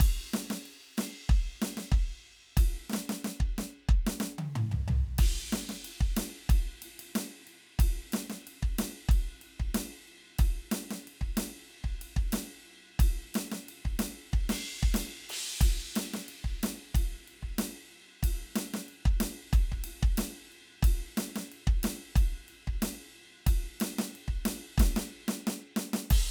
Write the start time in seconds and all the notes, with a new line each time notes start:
0.00 kick, ride, crash
0.32 snare, ride
0.50 snare
0.65 ride
0.97 snare, ride
1.29 kick, ride
1.62 snare, ride
1.77 snare
1.92 kick, ride
2.57 kick, ride
2.90 snare
2.93 snare
3.09 snare
3.24 snare
3.40 kick
3.58 snare
3.89 kick
4.07 snare
4.20 snare
4.38 high tom
4.55 mid tom
4.71 floor tom
4.88 floor tom
5.18 kick, ride, crash
5.52 snare
5.69 snare
5.84 ride
6.00 kick
6.16 snare, ride
6.49 kick, ride
6.82 ride
6.99 ride
7.15 snare, ride
7.47 ride
7.79 kick, ride
8.12 snare, ride
8.30 snare
8.47 ride
8.62 kick
8.78 snare, ride
9.09 kick, ride
9.41 ride
9.60 kick
9.74 snare, ride
10.07 ride
10.38 kick, ride
10.71 snare, ride
10.90 snare
11.07 ride
11.21 kick
11.37 snare, ride
11.69 ride
11.84 kick
12.01 ride
12.16 kick
12.32 snare, ride
12.99 kick, ride
13.34 snare, ride
13.51 snare
13.68 ride
13.85 kick
13.99 snare, ride
14.32 kick, ride
14.49 snare, ride
14.82 kick
14.94 snare, ride
15.29 crash
15.61 kick, ride
15.96 snare, ride
16.13 snare
16.28 ride
16.44 kick
16.63 snare, ride
16.94 kick, ride
17.27 ride
17.42 kick
17.58 snare, ride
17.91 ride
18.23 kick, ride
18.55 snare, ride
18.74 snare
18.88 ride
19.05 kick
19.20 snare, ride
19.53 kick, ride
19.72 kick
19.84 ride
20.02 kick
20.17 snare, ride
20.52 ride
20.82 kick, ride
21.17 snare, ride
21.36 snare
21.52 ride
21.67 kick
21.83 snare, ride
22.15 kick, ride
22.48 ride
22.67 kick
22.82 snare, ride
23.46 kick, ride
23.80 snare, ride
23.98 snare
24.15 ride
24.28 kick
24.45 snare, ride
24.78 kick, snare, ride
24.96 snare
25.28 snare
25.47 snare
25.76 snare
25.93 snare
26.10 kick, crash